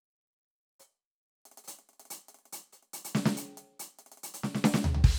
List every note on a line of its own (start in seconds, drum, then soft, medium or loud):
0.80 hi-hat pedal medium
1.45 closed hi-hat medium
1.52 closed hi-hat soft
1.57 closed hi-hat medium
1.64 closed hi-hat soft
1.68 closed hi-hat loud
1.79 closed hi-hat soft
1.89 closed hi-hat soft
1.93 closed hi-hat soft
2.00 closed hi-hat medium
2.05 closed hi-hat soft
2.10 closed hi-hat loud
2.28 closed hi-hat medium
2.34 closed hi-hat soft
2.39 closed hi-hat soft
2.46 closed hi-hat soft
2.53 closed hi-hat loud
2.73 closed hi-hat medium
2.83 closed hi-hat soft
2.93 closed hi-hat loud
3.05 closed hi-hat loud
3.15 snare loud
3.25 snare loud
3.37 closed hi-hat loud
3.57 closed hi-hat medium
3.79 closed hi-hat loud
3.99 closed hi-hat medium
4.06 closed hi-hat soft
4.12 closed hi-hat medium
4.17 closed hi-hat soft
4.23 closed hi-hat loud
4.34 closed hi-hat loud
4.43 snare medium
4.55 snare medium
4.64 snare loud
4.74 snare loud
4.84 floor tom loud
4.95 floor tom loud
5.04 kick loud
5.04 crash loud